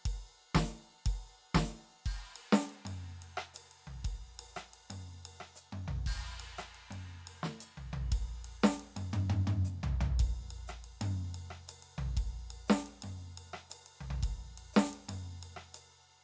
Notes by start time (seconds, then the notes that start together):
0.06 kick, ride
0.55 kick, snare, ride
1.06 kick, ride
1.34 ride
1.42 ride
1.55 kick, snare, ride
2.06 kick, ride
2.36 ride
2.53 snare, hi-hat pedal
2.70 ride
2.85 mid tom, ride
3.22 ride
3.37 cross-stick
3.54 hi-hat pedal, ride
3.72 ride
3.87 floor tom
4.03 kick, hi-hat pedal, ride
4.39 ride
4.56 cross-stick, hi-hat pedal
4.74 ride
4.90 mid tom, ride
5.26 ride
5.40 cross-stick
5.56 hi-hat pedal, ride bell
5.73 mid tom
5.88 floor tom
6.06 kick, ride
6.40 ride
6.58 cross-stick, hi-hat pedal
6.75 ride
6.91 mid tom, ride
7.27 ride
7.43 snare
7.60 hi-hat pedal, ride bell
7.78 floor tom
7.93 floor tom
8.12 kick, ride
8.30 ride
8.45 ride
8.63 snare, hi-hat pedal
8.80 ride
8.97 mid tom, ride
9.12 hi-hat pedal, mid tom
9.30 mid tom
9.47 mid tom
9.65 hi-hat pedal
9.83 floor tom
10.01 floor tom
10.20 kick, ride
10.51 ride
10.68 cross-stick, hi-hat pedal
10.84 ride
11.01 mid tom, ride
11.35 ride
11.51 cross-stick
11.68 hi-hat pedal, ride
11.83 ride
11.98 floor tom
12.17 kick, ride
12.51 ride
12.68 snare, hi-hat pedal
12.86 ride
13.03 mid tom, ride
13.18 hi-hat pedal
13.38 ride
13.54 cross-stick
13.70 hi-hat pedal, ride
13.86 ride
14.01 floor tom
14.10 floor tom
14.23 kick, ride
14.58 ride
14.74 snare, hi-hat pedal
14.93 ride
15.09 mid tom, ride
15.22 hi-hat pedal
15.43 ride
15.57 cross-stick
15.74 hi-hat pedal, ride